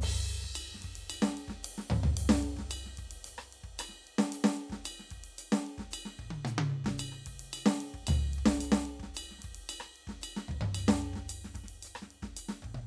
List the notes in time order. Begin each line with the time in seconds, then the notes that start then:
0.01 kick, hi-hat pedal, crash
0.09 kick
0.44 kick, snare
0.54 hi-hat pedal, ride bell
0.74 snare
0.81 snare, ride
0.83 kick, snare
0.90 kick
0.96 ride
1.10 hi-hat pedal, ride bell
1.22 snare
1.28 snare
1.37 ride
1.48 kick, snare
1.54 kick
1.63 hi-hat pedal, ride
1.78 snare
1.90 kick, floor tom
2.04 floor tom
2.17 hi-hat pedal, ride
2.29 snare
2.43 ride
2.57 kick, snare
2.70 hi-hat pedal, ride bell
2.86 snare
2.98 kick, ride
3.07 snare
3.11 ride
3.25 hi-hat pedal, ride
3.38 cross-stick
3.53 ride
3.64 kick
3.78 cross-stick, hi-hat pedal, ride bell
3.89 snare
4.07 ride
4.19 snare
4.32 hi-hat pedal, ride
4.44 snare
4.56 hi-hat pedal, ride
4.70 kick, snare
4.85 hi-hat pedal, ride bell
5.00 snare
5.09 kick, snare, ride
5.13 snare
5.15 kick, snare
5.17 snare
5.24 ride
5.38 hi-hat pedal, ride bell
5.52 snare
5.67 ride
5.78 kick, snare
5.91 hi-hat pedal, ride bell
6.05 snare
6.19 kick, mid tom
6.25 kick
6.31 high tom
6.45 hi-hat pedal, mid tom
6.58 high tom
6.70 mid tom
6.84 kick, snare
6.98 hi-hat pedal, ride bell
7.12 cross-stick
7.26 kick, ride
7.40 ride
7.53 hi-hat pedal, ride bell
7.66 snare
7.81 ride
7.94 kick
8.07 floor tom, hi-hat pedal, ride bell
8.34 ride
8.38 kick
8.44 kick, snare
8.61 hi-hat pedal, ride bell
8.72 snare
8.85 ride
9.00 kick, snare
9.14 hi-hat pedal, ride bell
9.31 snare
9.39 snare, ride
9.44 kick
9.51 snare, ride
9.55 snare
9.69 hi-hat pedal, ride bell
9.80 cross-stick
9.86 cross-stick
9.96 ride
10.07 kick, snare
10.22 hi-hat pedal, ride bell
10.37 snare
10.48 kick, floor tom
10.61 floor tom
10.75 hi-hat pedal, ride bell
10.88 snare
11.02 ride
11.13 kick, snare
11.29 hi-hat pedal, ride bell
11.45 snare
11.54 kick, snare, ride
11.64 snare
11.69 ride
11.83 hi-hat pedal, ride bell
11.95 cross-stick
12.02 snare
12.11 ride
12.22 kick, snare
12.36 hi-hat pedal, ride bell
12.49 snare
12.62 kick, mid tom
12.70 kick
12.75 mid tom